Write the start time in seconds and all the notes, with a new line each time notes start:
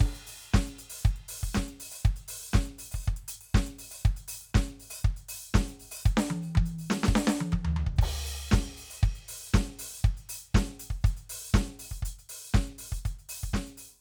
0.01 kick, crash
0.15 closed hi-hat
0.27 open hi-hat
0.41 open hi-hat
0.51 kick, snare, hi-hat pedal
0.67 closed hi-hat
0.79 closed hi-hat
0.90 open hi-hat
1.02 kick, hi-hat pedal
1.06 closed hi-hat
1.16 closed hi-hat
1.29 open hi-hat
1.41 kick, open hi-hat
1.55 kick, snare, hi-hat pedal
1.69 closed hi-hat
1.80 open hi-hat
1.92 open hi-hat
2.00 hi-hat pedal
2.05 kick, closed hi-hat
2.16 closed hi-hat
2.28 open hi-hat
2.42 open hi-hat
2.52 kick, snare, hi-hat pedal
2.66 closed hi-hat
2.79 open hi-hat
2.91 open hi-hat, kick
3.05 kick, hi-hat pedal, open hi-hat
3.17 closed hi-hat
3.28 open hi-hat
3.41 open hi-hat
3.53 kick, snare, hi-hat pedal
3.67 closed hi-hat
3.79 open hi-hat
3.91 open hi-hat
4.00 hi-hat pedal
4.05 kick, closed hi-hat
4.17 closed hi-hat
4.28 open hi-hat
4.41 open hi-hat
4.50 hi-hat pedal
4.55 kick, snare
4.69 closed hi-hat
4.80 open hi-hat
4.90 open hi-hat
4.99 hi-hat pedal
5.05 kick, closed hi-hat
5.17 closed hi-hat
5.29 open hi-hat
5.42 open hi-hat
5.50 hi-hat pedal
5.54 kick, snare
5.68 closed hi-hat
5.76 kick
5.80 open hi-hat
5.92 open hi-hat
6.01 hi-hat pedal
6.06 closed hi-hat, kick
6.17 snare
6.30 high tom
6.42 open hi-hat
6.52 hi-hat pedal, high tom
6.58 kick
6.66 closed hi-hat
6.79 open hi-hat
6.90 snare
7.03 snare, hi-hat pedal
7.09 kick
7.16 snare
7.27 snare
7.41 high tom
7.50 kick, hi-hat pedal, high tom
7.65 floor tom
7.77 floor tom
7.87 kick
7.96 kick, hi-hat pedal
8.02 crash
8.26 open hi-hat
8.41 open hi-hat
8.49 snare, hi-hat pedal
8.54 kick
8.63 closed hi-hat
8.77 open hi-hat
8.90 open hi-hat
8.97 hi-hat pedal
9.03 kick, closed hi-hat
9.15 closed hi-hat
9.29 open hi-hat
9.42 open hi-hat
9.50 snare, hi-hat pedal
9.54 kick
9.68 closed hi-hat
9.79 open hi-hat
9.93 open hi-hat
10.01 kick, hi-hat pedal
10.06 closed hi-hat
10.17 closed hi-hat
10.29 open hi-hat
10.42 open hi-hat
10.51 kick, hi-hat pedal
10.55 snare
10.67 closed hi-hat
10.80 open hi-hat
10.91 kick, open hi-hat
11.02 kick, hi-hat pedal
11.06 closed hi-hat
11.17 closed hi-hat
11.30 open hi-hat
11.43 open hi-hat
11.50 kick, hi-hat pedal
11.54 snare
11.68 closed hi-hat
11.79 open hi-hat
11.91 kick, open hi-hat
11.98 hi-hat pedal
12.03 closed hi-hat, kick
12.19 open hi-hat
12.29 open hi-hat
12.41 open hi-hat
12.51 snare, hi-hat pedal
12.55 kick
12.68 closed hi-hat
12.79 open hi-hat
12.92 kick, open hi-hat
12.97 hi-hat pedal
13.05 closed hi-hat, kick
13.19 open hi-hat
13.29 open hi-hat
13.44 kick
13.51 snare, hi-hat pedal
13.67 closed hi-hat
13.78 open hi-hat
13.89 open hi-hat